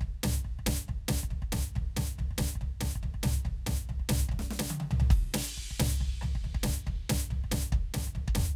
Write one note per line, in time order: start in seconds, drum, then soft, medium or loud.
0.01 kick medium
0.01 floor tom medium
0.24 snare loud
0.24 floor tom loud
0.45 kick soft
0.45 floor tom soft
0.59 kick soft
0.67 snare loud
0.67 floor tom loud
0.87 kick soft
0.87 snare soft
0.87 floor tom medium
1.08 snare loud
1.08 floor tom loud
1.23 kick medium
1.29 snare soft
1.29 floor tom medium
1.42 kick medium
1.52 snare loud
1.52 floor tom loud
1.76 kick medium
1.76 floor tom medium
1.97 snare loud
1.97 floor tom loud
2.19 kick soft
2.19 floor tom medium
2.31 kick soft
2.38 snare loud
2.38 floor tom loud
2.56 kick soft
2.61 floor tom medium
2.81 snare medium
2.81 floor tom medium
2.96 kick soft
3.03 floor tom medium
3.14 kick soft
3.23 snare loud
3.23 floor tom loud
3.45 kick medium
3.45 floor tom medium
3.67 snare loud
3.67 floor tom loud
3.89 kick soft
3.89 floor tom medium
4.00 kick soft
4.09 snare loud
4.09 floor tom loud
4.29 kick medium
4.29 floor tom medium
4.39 snare medium
4.51 snare medium
4.59 snare loud
4.70 high tom loud
4.80 high tom loud
4.91 floor tom loud
5.00 floor tom loud
5.11 kick loud
5.11 ride medium
5.34 snare loud
5.34 crash loud
5.58 kick soft
5.71 kick soft
5.80 snare loud
5.80 floor tom loud
6.01 kick soft
6.01 floor tom medium
6.22 cross-stick medium
6.22 floor tom loud
6.35 kick medium
6.35 snare soft
6.44 floor tom medium
6.55 kick medium
6.63 snare loud
6.63 floor tom loud
6.84 kick medium
6.84 snare soft
6.84 floor tom medium
7.10 snare loud
7.10 floor tom loud
7.29 kick soft
7.29 snare soft
7.29 floor tom medium
7.44 kick soft
7.52 snare loud
7.52 floor tom loud
7.72 kick medium
7.72 floor tom medium
7.94 snare medium
7.94 floor tom loud
8.07 kick soft
8.07 snare soft
8.15 floor tom medium
8.28 kick medium
8.35 snare loud
8.35 floor tom loud